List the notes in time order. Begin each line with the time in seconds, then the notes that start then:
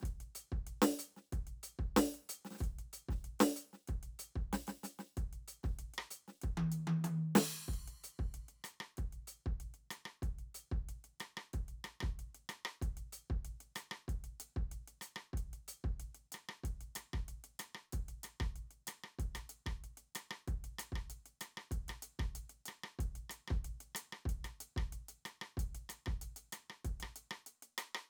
0.01 kick, snare
0.06 closed hi-hat
0.21 closed hi-hat
0.35 closed hi-hat
0.52 kick
0.67 closed hi-hat
0.82 snare, closed hi-hat
0.99 closed hi-hat
1.17 snare
1.33 kick, closed hi-hat
1.47 closed hi-hat
1.63 closed hi-hat
1.79 kick
1.97 snare, closed hi-hat
2.14 closed hi-hat
2.30 open hi-hat
2.45 snare
2.51 snare
2.54 snare
2.58 kick, snare, hi-hat pedal
2.64 closed hi-hat
2.79 closed hi-hat
2.93 closed hi-hat
3.09 kick, snare
3.25 closed hi-hat
3.40 snare, closed hi-hat
3.56 closed hi-hat
3.73 snare
3.88 kick, closed hi-hat
4.03 closed hi-hat
4.19 closed hi-hat
4.36 kick
4.53 snare, closed hi-hat
4.67 snare, closed hi-hat
4.84 closed hi-hat, snare
4.99 snare
5.17 kick, closed hi-hat
5.33 closed hi-hat
5.48 closed hi-hat
5.64 kick, snare
5.79 closed hi-hat
5.94 closed hi-hat
5.98 cross-stick
6.11 closed hi-hat
6.28 snare
6.42 kick, closed hi-hat
6.58 high tom
6.72 closed hi-hat
6.88 high tom
7.05 closed hi-hat, high tom
7.36 snare, crash
7.68 kick
7.74 closed hi-hat
7.88 closed hi-hat
8.04 closed hi-hat
8.19 kick
8.34 closed hi-hat
8.49 closed hi-hat
8.64 closed hi-hat, cross-stick
8.81 cross-stick
8.97 kick, closed hi-hat
9.13 closed hi-hat
9.28 closed hi-hat
9.46 kick
9.60 closed hi-hat
9.74 closed hi-hat
9.91 cross-stick, closed hi-hat
10.06 cross-stick
10.23 kick, closed hi-hat
10.39 closed hi-hat
10.55 closed hi-hat
10.72 kick
10.89 closed hi-hat
11.05 closed hi-hat
11.20 cross-stick, closed hi-hat
11.37 cross-stick
11.54 kick, closed hi-hat
11.69 closed hi-hat
11.85 cross-stick, closed hi-hat
12.01 kick, cross-stick
12.19 closed hi-hat
12.35 closed hi-hat
12.49 cross-stick, closed hi-hat
12.65 cross-stick
12.82 kick, closed hi-hat
12.97 closed hi-hat
13.13 closed hi-hat
13.30 kick
13.45 closed hi-hat
13.61 closed hi-hat
13.76 closed hi-hat, cross-stick
13.92 cross-stick
14.08 kick, closed hi-hat
14.24 closed hi-hat
14.40 closed hi-hat
14.57 kick
14.72 closed hi-hat
14.88 closed hi-hat
15.02 closed hi-hat, cross-stick
15.16 cross-stick
15.34 kick, closed hi-hat
15.53 closed hi-hat
15.68 closed hi-hat
15.84 kick
16.00 closed hi-hat
16.15 closed hi-hat
16.32 cross-stick, closed hi-hat
16.49 cross-stick
16.64 kick, closed hi-hat
16.81 closed hi-hat
16.96 cross-stick, closed hi-hat
17.14 kick, cross-stick
17.29 closed hi-hat
17.44 closed hi-hat
17.60 cross-stick, closed hi-hat
17.75 cross-stick
17.93 kick, closed hi-hat
18.09 closed hi-hat
18.24 cross-stick, closed hi-hat
18.40 kick, cross-stick
18.56 closed hi-hat
18.71 closed hi-hat
18.88 cross-stick, closed hi-hat
19.04 cross-stick
19.19 kick, closed hi-hat
19.35 cross-stick, closed hi-hat
19.50 closed hi-hat
19.66 kick, cross-stick
19.84 closed hi-hat
19.98 closed hi-hat
20.15 cross-stick, closed hi-hat
20.31 cross-stick
20.48 kick, closed hi-hat
20.64 closed hi-hat
20.79 cross-stick, closed hi-hat
20.92 kick, cross-stick
21.10 closed hi-hat
21.26 closed hi-hat
21.41 cross-stick, closed hi-hat
21.58 cross-stick
21.71 kick, closed hi-hat
21.89 cross-stick, closed hi-hat
22.03 closed hi-hat
22.19 kick, cross-stick
22.36 closed hi-hat
22.50 closed hi-hat
22.66 cross-stick, closed hi-hat
22.84 cross-stick
22.99 kick, closed hi-hat
23.16 closed hi-hat
23.30 cross-stick, closed hi-hat
23.48 kick, cross-stick
23.65 closed hi-hat
23.81 closed hi-hat
23.95 cross-stick, closed hi-hat
24.13 cross-stick
24.26 kick, closed hi-hat
24.45 cross-stick, closed hi-hat
24.61 closed hi-hat
24.77 kick, cross-stick
24.93 closed hi-hat
25.09 closed hi-hat
25.26 cross-stick, closed hi-hat
25.42 cross-stick
25.57 kick, closed hi-hat
25.75 closed hi-hat
25.90 cross-stick, closed hi-hat
26.06 kick, cross-stick
26.22 closed hi-hat
26.37 closed hi-hat
26.53 cross-stick, closed hi-hat
26.70 cross-stick
26.85 kick, closed hi-hat
27.00 cross-stick, closed hi-hat
27.16 closed hi-hat
27.31 cross-stick
27.47 closed hi-hat
27.63 closed hi-hat
27.78 cross-stick, closed hi-hat
27.95 cross-stick